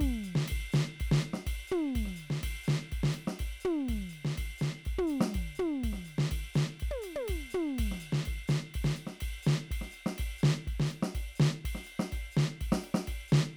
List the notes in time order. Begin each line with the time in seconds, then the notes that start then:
0.01 kick, ride bell
0.08 kick
0.24 hi-hat pedal, ride
0.36 snare
0.46 hi-hat pedal, ride bell
0.52 kick
0.58 kick
0.72 snare, hi-hat pedal
1.00 kick, ride bell
1.07 kick
1.12 snare
1.20 hi-hat pedal
1.34 snare
1.47 kick, ride bell
1.53 kick
1.68 floor tom, hi-hat pedal
1.96 kick, ride bell
2.02 kick, snare
2.16 hi-hat pedal, ride
2.31 snare
2.43 kick, ride bell
2.49 kick
2.64 hi-hat pedal
2.68 snare
2.85 hi-hat pedal
2.92 kick, ride bell
2.98 kick
3.04 snare
3.12 hi-hat pedal, ride
3.28 snare
3.39 kick, ride bell
3.46 kick
3.61 hi-hat pedal
3.65 floor tom
3.89 kick, ride bell
3.93 kick, snare
4.09 hi-hat pedal, ride
4.25 snare
4.38 kick, ride bell
4.44 kick
4.58 snare, hi-hat pedal
4.86 kick, ride bell
4.93 kick
4.98 floor tom
5.07 hi-hat pedal, ride
5.21 snare
5.34 kick, ride bell
5.42 kick
5.55 hi-hat pedal, floor tom
5.84 kick, ride bell
5.90 kick, snare
6.05 hi-hat pedal, ride
6.19 snare
6.31 kick, ride bell
6.38 kick
6.54 snare, hi-hat pedal
6.80 kick, ride bell
6.89 kick, high tom
7.02 hi-hat pedal, ride
7.16 high tom
7.28 kick, ride bell
7.36 kick
7.51 hi-hat pedal, floor tom
7.79 kick, ride bell
7.86 kick
7.92 snare
8.00 hi-hat pedal, ride
8.13 snare
8.22 hi-hat pedal, ride bell
8.28 kick
8.34 kick
8.48 snare, hi-hat pedal
8.70 hi-hat pedal
8.74 kick, ride bell
8.81 kick, snare
8.96 hi-hat pedal, ride
9.07 snare
9.21 kick, ride bell
9.28 kick
9.43 hi-hat pedal
9.47 snare
9.71 kick, ride bell
9.77 kick
9.82 snare
9.92 hi-hat pedal, ride
10.06 snare
10.18 kick, ride bell
10.25 kick
10.39 hi-hat pedal
10.44 snare
10.67 kick, ride bell
10.73 kick
10.80 snare
10.87 hi-hat pedal, ride
11.03 snare
11.15 kick, ride bell
11.21 kick
11.36 hi-hat pedal
11.40 snare
11.65 kick, ride bell
11.75 snare
11.84 hi-hat pedal, ride
12.00 snare
12.13 kick, ride bell
12.19 kick
12.32 hi-hat pedal
12.37 snare
12.61 kick, ride
12.67 kick
12.72 snare
12.80 hi-hat pedal, ride
12.95 snare
13.08 kick, ride bell
13.14 kick
13.28 hi-hat pedal
13.33 snare